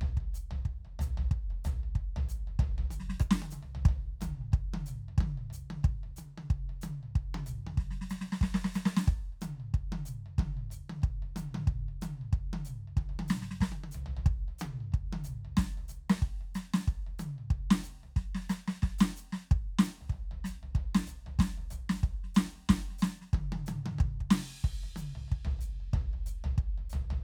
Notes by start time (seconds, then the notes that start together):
0.01 floor tom
0.17 kick, floor tom
0.34 floor tom, hi-hat pedal
0.51 floor tom
0.65 kick, floor tom
0.85 floor tom
0.99 floor tom, hi-hat pedal
1.17 floor tom
1.31 kick, floor tom
1.50 floor tom
1.64 floor tom, hi-hat pedal
1.83 floor tom
1.95 kick, floor tom
2.16 floor tom
2.29 floor tom, hi-hat pedal
2.47 floor tom
2.59 kick, floor tom
2.78 floor tom
2.91 hi-hat pedal, high tom
3.00 snare
3.10 snare
3.20 kick, cross-stick
3.31 snare
3.42 high tom
3.51 hi-hat pedal, high tom
3.63 floor tom
3.75 floor tom
3.85 kick, floor tom
4.21 floor tom, hi-hat pedal, high tom
4.41 high tom
4.52 kick, floor tom
4.74 high tom
4.86 floor tom, hi-hat pedal
5.08 floor tom
5.18 kick, high tom
5.35 kick, floor tom
5.50 floor tom, hi-hat pedal
5.70 high tom
5.84 kick, floor tom
6.03 floor tom
6.16 hi-hat pedal, high tom
6.38 high tom
6.50 kick, floor tom
6.69 floor tom
6.81 hi-hat pedal, high tom
6.89 kick
7.03 floor tom
7.15 kick, floor tom
7.34 high tom
7.46 floor tom, hi-hat pedal
7.67 high tom
7.77 kick, snare
7.91 snare
8.01 snare
8.10 snare, hi-hat pedal
8.21 snare
8.32 snare
8.41 kick, snare
8.54 snare
8.64 snare
8.74 snare, hi-hat pedal
8.86 snare
8.97 snare
9.08 kick, floor tom
9.32 floor tom
9.41 hi-hat pedal, high tom
9.60 floor tom
9.74 kick, floor tom
9.92 high tom
10.05 floor tom, hi-hat pedal
10.26 floor tom
10.38 kick, high tom
10.57 floor tom
10.71 floor tom, hi-hat pedal
10.90 high tom
11.02 kick, floor tom
11.22 floor tom
11.36 hi-hat pedal, high tom
11.55 high tom
11.67 kick, floor tom
11.88 floor tom
12.01 hi-hat pedal, high tom
12.21 floor tom
12.33 kick, floor tom
12.53 high tom
12.65 floor tom, hi-hat pedal
12.88 floor tom
12.97 kick, high tom
13.09 floor tom
13.19 high tom
13.28 snare, hi-hat pedal
13.42 snare
13.51 snare
13.61 kick, snare
13.72 high tom
13.84 high tom
13.91 floor tom, hi-hat pedal
14.06 floor tom
14.17 floor tom
14.26 kick
14.48 floor tom
14.59 hi-hat pedal, high tom
14.80 floor tom
14.92 kick, floor tom
15.13 high tom
15.24 floor tom, hi-hat pedal
15.45 floor tom
15.57 kick, snare
15.77 floor tom
15.88 floor tom, hi-hat pedal
16.10 snare
16.22 kick, floor tom
16.41 floor tom
16.55 kick, snare, hi-hat pedal
16.74 snare
16.87 kick, floor tom
17.07 floor tom
17.19 hi-hat pedal, high tom
17.38 floor tom
17.50 kick, floor tom
17.71 snare
17.84 floor tom, hi-hat pedal
18.03 floor tom
18.16 kick, snare
18.35 snare
18.49 snare, hi-hat pedal
18.68 snare
18.82 kick, snare
18.99 closed hi-hat, snare
19.16 hi-hat pedal
19.33 snare
19.51 kick
19.79 snare
19.83 hi-hat pedal
20.01 floor tom
20.10 kick, floor tom
20.31 floor tom
20.44 snare, hi-hat pedal
20.63 floor tom
20.75 kick, floor tom
20.95 snare
21.07 floor tom, hi-hat pedal
21.26 floor tom
21.39 kick, snare
21.58 floor tom
21.70 floor tom, hi-hat pedal
21.89 snare
22.03 kick, floor tom
22.24 snare
22.35 snare, hi-hat pedal
22.57 snare
22.69 kick, snare
22.90 snare
22.99 snare, hi-hat pedal
23.22 snare
23.33 kick, high tom
23.52 high tom
23.66 hi-hat pedal, high tom
23.86 high tom
23.99 kick, high tom
24.20 kick
24.31 snare, hi-hat pedal, crash
24.36 snare
24.64 kick, floor tom
24.83 floor tom
24.96 hi-hat pedal, high tom
25.15 floor tom
25.28 kick, floor tom
25.45 floor tom
25.59 floor tom, hi-hat pedal
25.80 floor tom
25.93 kick, floor tom
26.13 floor tom
26.26 floor tom, hi-hat pedal
26.44 floor tom
26.58 kick, floor tom
26.78 floor tom
26.90 floor tom, hi-hat pedal
27.10 floor tom